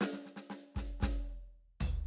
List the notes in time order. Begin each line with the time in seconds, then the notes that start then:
0.00 snare, hi-hat pedal
0.13 snare
0.26 snare
0.36 snare
0.50 snare
0.75 kick, snare
0.77 snare
1.00 kick, snare
1.03 snare
1.80 open hi-hat, kick, floor tom